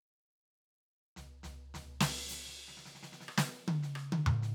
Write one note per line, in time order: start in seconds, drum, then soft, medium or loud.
1.16 snare soft
1.16 floor tom soft
1.43 snare soft
1.43 floor tom soft
1.74 snare medium
1.74 floor tom medium
2.00 snare loud
2.00 ride loud
2.28 snare soft
2.28 hi-hat pedal medium
2.46 snare soft
2.68 snare soft
2.77 snare soft
2.85 snare soft
2.95 snare soft
3.03 snare soft
3.12 snare soft
3.20 snare soft
3.28 cross-stick medium
3.38 snare loud
3.68 high tom loud
3.83 snare soft
3.95 cross-stick medium
4.12 high tom loud
4.26 mid tom loud
4.42 snare soft